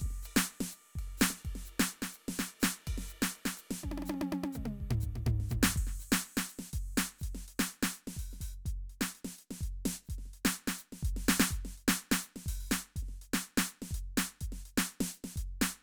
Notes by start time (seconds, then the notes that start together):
0.01 kick, crash
0.06 kick, snare
0.10 snare
0.22 hi-hat pedal, ride bell
0.36 snare
0.49 ride
0.60 snare
0.70 hi-hat pedal, ride
0.95 kick, ride
1.17 snare, hi-hat pedal
1.21 ride
1.30 snare
1.45 kick, ride
1.55 snare
1.64 hi-hat pedal
1.69 ride
1.79 snare
1.93 ride
2.02 snare
2.11 hi-hat pedal
2.16 ride
2.28 snare
2.39 snare, ride
2.60 snare, hi-hat pedal, ride
2.87 kick, ride bell
2.93 kick
2.98 snare
3.07 hi-hat pedal
3.12 ride
3.22 snare
3.35 ride
3.45 snare
3.56 hi-hat pedal, ride
3.71 snare
3.83 kick, high tom
3.91 high tom
3.98 high tom
4.02 hi-hat pedal, high tom
4.09 high tom
4.14 high tom
4.21 high tom
4.32 high tom
4.44 high tom
4.52 hi-hat pedal, mid tom
4.57 kick
4.65 mid tom
4.80 kick
4.91 floor tom
5.00 kick, hi-hat pedal
5.15 floor tom
5.26 kick, floor tom
5.40 snare
5.49 kick, floor tom, hi-hat pedal
5.56 kick
5.63 snare
5.76 kick, crash
5.83 kick, snare
5.99 closed hi-hat, hi-hat pedal
6.12 snare
6.25 closed hi-hat
6.37 snare
6.48 closed hi-hat, hi-hat pedal
6.59 snare
6.73 closed hi-hat, kick
6.97 closed hi-hat, snare
7.18 kick, hi-hat pedal
7.23 closed hi-hat
7.35 snare
7.48 closed hi-hat
7.59 snare
7.71 closed hi-hat
7.83 snare
7.92 closed hi-hat, hi-hat pedal
8.07 snare
8.17 open hi-hat, kick
8.33 snare
8.41 open hi-hat, kick
8.66 closed hi-hat, kick
8.74 kick
8.89 closed hi-hat
9.01 snare
9.15 closed hi-hat
9.25 snare
9.35 closed hi-hat, hi-hat pedal
9.51 snare
9.61 closed hi-hat, kick
9.85 closed hi-hat, snare
10.04 hi-hat pedal
10.09 closed hi-hat, kick
10.18 snare
10.25 snare
10.33 closed hi-hat
10.45 snare
10.51 hi-hat pedal
10.56 closed hi-hat
10.67 snare
10.77 closed hi-hat, hi-hat pedal
10.92 snare
11.03 closed hi-hat, kick
11.09 kick
11.16 snare
11.28 snare
11.40 snare
11.51 closed hi-hat, kick
11.56 kick
11.65 snare
11.78 closed hi-hat
11.88 snare
12.01 closed hi-hat
12.11 snare
12.21 closed hi-hat, hi-hat pedal
12.36 snare
12.46 open hi-hat, kick
12.54 kick
12.69 closed hi-hat, snare, hi-hat pedal
12.96 closed hi-hat, kick
13.02 snare
13.08 snare
13.14 snare
13.21 closed hi-hat
13.33 snare
13.46 closed hi-hat
13.57 snare
13.67 closed hi-hat, hi-hat pedal
13.82 snare
13.91 closed hi-hat, kick
14.17 closed hi-hat, snare
14.41 closed hi-hat, kick
14.52 snare
14.65 closed hi-hat
14.78 snare
14.90 closed hi-hat
15.00 snare
15.12 closed hi-hat, hi-hat pedal
15.24 snare
15.36 closed hi-hat, kick
15.61 closed hi-hat, snare